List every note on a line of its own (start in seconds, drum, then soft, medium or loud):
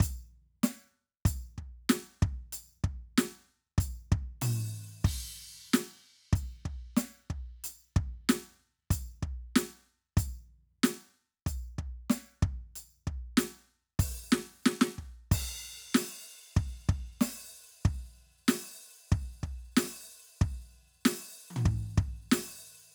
0.01 kick loud
0.01 percussion loud
0.64 snare loud
0.64 percussion loud
1.26 kick loud
1.26 percussion loud
1.59 kick medium
1.90 snare loud
1.90 percussion loud
2.23 kick loud
2.53 percussion loud
2.85 kick loud
3.18 snare loud
3.18 percussion loud
3.79 kick loud
3.79 percussion loud
4.13 kick loud
4.42 floor tom loud
4.42 percussion loud
5.05 kick loud
5.05 percussion soft
5.05 crash loud
5.74 snare loud
5.74 percussion loud
6.34 kick loud
6.34 percussion medium
6.66 kick medium
6.97 snare loud
6.97 percussion loud
7.31 kick medium
7.65 percussion loud
7.97 kick loud
8.30 snare loud
8.30 percussion loud
8.91 kick loud
8.91 percussion loud
9.23 kick medium
9.57 snare loud
9.57 percussion loud
10.18 kick loud
10.18 percussion loud
10.84 snare loud
10.84 percussion loud
10.94 snare soft
11.47 kick loud
11.47 percussion medium
11.79 kick medium
12.11 snare loud
12.11 percussion loud
12.43 kick loud
12.76 percussion medium
13.08 kick medium
13.38 snare loud
13.38 percussion loud
14.00 kick loud
14.00 percussion loud
14.33 snare loud
14.64 snare loud
14.64 percussion soft
14.82 snare loud
14.99 kick medium
15.32 kick loud
15.32 crash loud
15.32 percussion loud
15.95 snare loud
15.95 percussion loud
16.57 kick loud
16.90 kick loud
17.22 snare loud
17.22 percussion loud
17.86 kick loud
18.49 snare loud
18.49 percussion loud
19.13 kick loud
19.44 kick medium
19.78 snare loud
19.78 percussion loud
19.85 snare soft
20.42 kick loud
21.06 snare loud
21.06 percussion loud
21.51 high tom medium
21.57 floor tom loud
21.66 kick loud
21.98 kick loud
22.32 snare loud
22.32 percussion loud